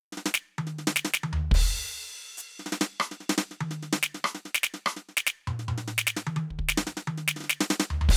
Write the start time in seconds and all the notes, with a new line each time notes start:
0.12 snare
0.17 snare
0.26 snare
0.34 snare
0.58 high tom
0.67 snare
0.78 snare
0.87 snare
0.96 snare
1.05 snare
1.14 snare
1.23 high tom
1.33 floor tom
1.51 kick, crash
2.37 hi-hat pedal
2.59 snare
2.66 snare
2.72 snare
2.81 snare
3.00 cross-stick
3.11 snare
3.20 snare
3.29 snare
3.38 snare
3.51 snare
3.61 high tom
3.71 snare
3.83 snare
3.93 snare
4.03 snare
4.14 snare
4.24 cross-stick
4.35 snare
4.45 snare
4.54 snare
4.63 snare
4.74 snare
4.86 cross-stick
4.96 snare
5.09 snare
5.17 snare
5.27 snare
5.47 mid tom
5.59 snare
5.68 mid tom
5.78 snare
5.88 snare
5.98 snare
6.07 snare
6.16 snare
6.27 high tom
6.36 high tom
6.50 kick
6.59 kick
6.69 snare
6.77 snare
6.87 snare
7.07 high tom
7.18 snare
7.28 snare
7.36 snare
7.40 snare
7.44 snare
7.49 snare
7.61 snare
7.66 snare, hi-hat pedal
7.80 snare
7.90 floor tom
8.01 floor tom
8.09 kick, crash